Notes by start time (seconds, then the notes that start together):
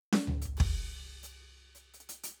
0.12 snare
0.27 floor tom
0.42 closed hi-hat, kick
0.57 kick, crash
1.23 hi-hat pedal
1.75 hi-hat pedal
1.94 closed hi-hat
2.00 closed hi-hat
2.09 closed hi-hat
2.23 closed hi-hat